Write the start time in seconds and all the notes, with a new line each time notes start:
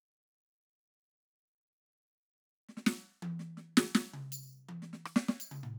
2.69 snare
2.77 snare
2.87 snare
3.23 high tom
3.40 snare
3.58 snare
3.77 snare
3.95 snare
4.14 mid tom
4.32 percussion
4.69 high tom
4.83 snare
4.93 snare
5.06 cross-stick
5.16 snare
5.29 snare
5.40 percussion
5.52 mid tom
5.64 floor tom